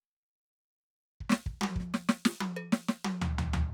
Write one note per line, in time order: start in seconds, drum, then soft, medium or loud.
1.20 kick soft
1.30 snare loud
1.32 snare loud
1.46 kick medium
1.61 high tom loud
1.63 high tom loud
1.76 kick medium
1.80 snare soft
1.94 snare medium
2.09 snare loud
2.25 snare loud
2.41 high tom loud
2.56 percussion loud
2.72 snare loud
2.89 snare loud
3.05 high tom loud
3.22 floor tom loud
3.38 floor tom loud
3.53 floor tom loud